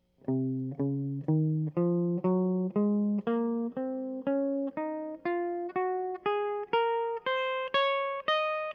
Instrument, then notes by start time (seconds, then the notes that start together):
electric guitar
0.29 C3
0.81 C#3
1.29 D#3
1.77 F3
2.25 F#3
2.76 G#3
3.27 A#3
3.77 C4
4.27 C#4
4.77 D#4
5.26 F4
5.76 F#4
6.26 G#4
6.73 A#4
7.27 C5
7.74 C#5
8.28 D#5